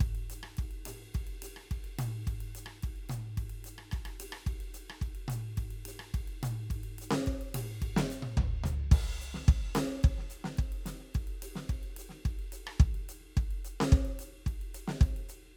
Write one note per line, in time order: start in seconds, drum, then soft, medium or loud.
0.01 kick loud
0.01 ride medium
0.15 ride soft
0.30 hi-hat pedal medium
0.30 ride medium
0.44 cross-stick medium
0.58 kick medium
0.58 ride medium
0.71 ride soft
0.86 hi-hat pedal medium
0.86 high tom soft
0.86 ride loud
1.15 kick medium
1.15 ride medium
1.27 ride soft
1.43 hi-hat pedal medium
1.43 ride medium
1.57 cross-stick medium
1.71 kick medium
1.71 ride soft
1.85 ride soft
1.99 hi-hat pedal medium
1.99 high tom loud
1.99 ride medium
2.27 kick medium
2.27 ride medium
2.41 ride medium
2.55 hi-hat pedal medium
2.55 ride medium
2.66 cross-stick medium
2.83 kick medium
2.83 ride medium
2.97 ride soft
3.09 hi-hat pedal medium
3.09 high tom loud
3.09 ride soft
3.38 kick medium
3.38 ride medium
3.50 ride soft
3.65 hi-hat pedal medium
3.65 ride medium
3.79 cross-stick medium
3.92 kick medium
3.92 cross-stick medium
3.92 ride soft
4.06 cross-stick medium
4.06 ride soft
4.20 hi-hat pedal medium
4.20 ride loud
4.33 cross-stick medium
4.47 kick medium
4.47 ride soft
4.61 ride soft
4.74 hi-hat pedal medium
4.74 ride medium
4.90 cross-stick medium
5.02 kick medium
5.02 ride soft
5.15 ride soft
5.28 hi-hat pedal medium
5.28 high tom loud
5.28 ride medium
5.58 kick medium
5.58 ride medium
5.71 ride soft
5.86 hi-hat pedal medium
5.86 ride medium
6.00 cross-stick medium
6.14 kick medium
6.14 ride medium
6.28 ride soft
6.43 hi-hat pedal medium
6.43 high tom loud
6.43 ride medium
6.71 kick medium
6.71 ride medium
6.84 ride soft
6.99 hi-hat pedal medium
6.99 ride medium
7.11 snare medium
7.27 kick medium
7.27 ride medium
7.42 ride soft
7.55 hi-hat pedal medium
7.55 high tom loud
7.55 ride loud
7.82 kick medium
7.82 ride medium
7.97 snare loud
8.11 hi-hat pedal medium
8.11 ride soft
8.23 high tom loud
8.38 kick loud
8.38 floor tom loud
8.64 floor tom loud
8.64 hi-hat pedal medium
8.92 kick loud
8.92 crash medium
8.92 ride medium
9.22 hi-hat pedal medium
9.22 ride soft
9.35 snare medium
9.48 kick loud
9.48 ride soft
9.75 snare medium
9.75 hi-hat pedal medium
9.75 ride medium
10.04 kick loud
10.04 ride soft
10.19 snare soft
10.30 hi-hat pedal medium
10.30 ride medium
10.45 snare medium
10.58 kick medium
10.58 ride soft
10.73 ride soft
10.86 snare medium
10.86 hi-hat pedal medium
10.86 ride medium
11.00 snare soft
11.15 kick medium
11.15 ride medium
11.28 ride soft
11.43 hi-hat pedal medium
11.43 ride medium
11.56 snare medium
11.70 kick medium
11.70 ride soft
11.84 ride soft
11.97 hi-hat pedal medium
11.97 ride medium
12.10 snare soft
12.26 kick medium
12.26 ride soft
12.39 ride soft
12.53 hi-hat pedal medium
12.53 ride medium
12.67 cross-stick medium
12.80 kick loud
12.80 ride soft
12.95 ride soft
13.09 hi-hat pedal medium
13.09 ride medium
13.21 snare soft
13.37 kick loud
13.37 ride soft
13.51 ride soft
13.65 hi-hat pedal medium
13.65 ride medium
13.81 snare medium
13.92 kick loud
13.92 ride soft
14.05 ride soft
14.20 hi-hat pedal medium
14.20 ride medium
14.47 kick medium
14.47 ride medium
14.62 ride soft
14.75 hi-hat pedal medium
14.75 ride medium
14.88 snare medium
15.01 kick loud
15.01 ride medium
15.17 ride soft
15.29 hi-hat pedal medium
15.29 ride medium
15.45 snare soft